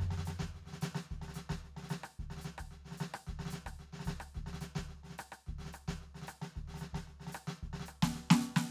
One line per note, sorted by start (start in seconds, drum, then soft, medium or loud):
0.01 kick soft
0.01 snare soft
0.09 kick soft
0.09 snare soft
0.19 snare soft
0.26 snare medium
0.26 hi-hat pedal soft
0.40 kick soft
0.40 snare medium
0.55 snare soft
0.62 snare soft
0.67 snare soft
0.73 snare soft
0.82 snare medium
0.82 hi-hat pedal medium
0.96 snare medium
1.11 kick soft
1.11 snare soft
1.18 kick soft
1.22 snare soft
1.29 snare soft
1.35 snare soft
1.35 hi-hat pedal medium
1.50 kick soft
1.50 snare medium
1.57 kick soft
1.65 snare soft
1.77 snare soft
1.84 snare soft
1.90 snare medium
1.90 hi-hat pedal soft
2.04 cross-stick medium
2.20 kick soft
2.20 snare soft
2.26 kick soft
2.31 snare soft
2.38 snare soft
2.42 snare soft
2.42 hi-hat pedal soft
2.59 kick soft
2.59 cross-stick medium
2.72 snare soft
2.78 snare soft
2.84 snare soft
2.86 snare soft
2.92 snare soft
2.98 snare medium
2.98 hi-hat pedal soft
3.15 cross-stick medium
3.28 kick soft
3.28 snare soft
3.36 kick soft
3.36 snare soft
3.46 snare medium
3.51 snare medium
3.51 hi-hat pedal medium
3.67 kick soft
3.67 cross-stick medium
3.80 snare soft
3.86 snare soft
3.91 snare soft
3.94 snare soft
4.00 snare soft
4.06 kick soft
4.06 snare medium
4.06 hi-hat pedal soft
4.13 kick soft
4.21 cross-stick medium
4.36 kick soft
4.36 snare soft
4.44 kick soft
4.44 snare soft
4.54 snare soft
4.62 snare soft
4.62 hi-hat pedal soft
4.76 kick soft
4.76 snare medium
4.85 kick soft
4.90 snare soft
4.97 snare soft
5.03 snare soft
5.11 snare soft
5.19 cross-stick medium
5.19 hi-hat pedal soft
5.33 cross-stick medium
5.47 kick soft
5.47 snare soft
5.55 kick soft
5.55 snare soft
5.59 snare soft
5.66 snare soft
5.74 cross-stick medium
5.74 hi-hat pedal soft
5.89 kick soft
5.89 snare medium
5.95 kick soft
6.01 snare soft
6.07 snare soft
6.13 snare soft
6.15 snare soft
6.22 snare soft
6.28 cross-stick medium
6.28 hi-hat pedal soft
6.42 snare medium
6.56 kick soft
6.56 snare soft
6.64 snare soft
6.69 snare soft
6.75 snare soft
6.75 hi-hat pedal soft
6.82 snare soft
6.94 kick soft
6.94 snare medium
7.08 snare soft
7.14 snare soft
7.19 snare soft
7.21 snare soft
7.28 snare soft
7.33 cross-stick medium
7.33 hi-hat pedal medium
7.48 snare medium
7.63 kick soft
7.63 snare soft
7.71 kick soft
7.71 snare soft
7.81 snare soft
7.87 cross-stick soft
7.87 hi-hat pedal soft
8.03 kick soft
8.03 snare loud
8.16 snare soft
8.31 snare loud
8.42 snare soft
8.42 hi-hat pedal soft
8.57 snare loud